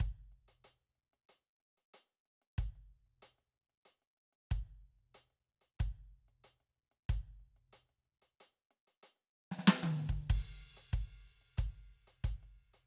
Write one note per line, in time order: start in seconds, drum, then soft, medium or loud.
0.00 closed hi-hat medium
0.00 kick soft
0.32 closed hi-hat soft
0.48 closed hi-hat soft
0.65 closed hi-hat medium
0.82 closed hi-hat soft
0.96 closed hi-hat soft
1.13 closed hi-hat soft
1.29 closed hi-hat soft
1.60 closed hi-hat soft
1.78 closed hi-hat soft
1.94 closed hi-hat medium
2.10 closed hi-hat soft
2.26 closed hi-hat soft
2.42 closed hi-hat soft
2.58 closed hi-hat medium
2.58 kick soft
2.76 closed hi-hat soft
3.06 closed hi-hat soft
3.22 closed hi-hat medium
3.39 closed hi-hat soft
3.54 closed hi-hat soft
3.70 closed hi-hat soft
3.85 closed hi-hat soft
4.02 closed hi-hat soft
4.17 closed hi-hat soft
4.33 closed hi-hat soft
4.51 closed hi-hat medium
4.51 kick soft
4.67 closed hi-hat soft
4.99 closed hi-hat soft
5.15 closed hi-hat medium
5.31 closed hi-hat soft
5.46 closed hi-hat soft
5.61 closed hi-hat soft
5.80 closed hi-hat medium
5.80 kick soft
5.97 closed hi-hat soft
6.11 closed hi-hat soft
6.28 closed hi-hat soft
6.44 closed hi-hat medium
6.60 closed hi-hat soft
6.76 closed hi-hat soft
6.92 closed hi-hat soft
7.09 closed hi-hat medium
7.09 kick soft
7.27 closed hi-hat soft
7.40 closed hi-hat soft
7.57 closed hi-hat soft
7.73 closed hi-hat medium
7.89 closed hi-hat soft
8.06 closed hi-hat soft
8.22 closed hi-hat soft
8.40 closed hi-hat medium
8.71 closed hi-hat soft
8.87 closed hi-hat soft
9.03 closed hi-hat medium
9.17 closed hi-hat soft
9.52 snare soft
9.59 snare soft
9.59 hi-hat pedal soft
9.68 snare loud
9.83 high tom loud
9.99 mid tom soft
10.09 kick soft
10.09 closed hi-hat soft
10.30 kick medium
10.30 crash soft
10.45 closed hi-hat soft
10.56 closed hi-hat soft
10.77 closed hi-hat medium
10.93 closed hi-hat medium
10.93 kick soft
11.09 closed hi-hat soft
11.27 closed hi-hat soft
11.42 closed hi-hat soft
11.58 closed hi-hat medium
11.58 kick soft
11.74 closed hi-hat soft
12.07 closed hi-hat soft
12.24 closed hi-hat medium
12.24 kick soft
12.43 closed hi-hat soft
12.57 closed hi-hat soft
12.74 closed hi-hat soft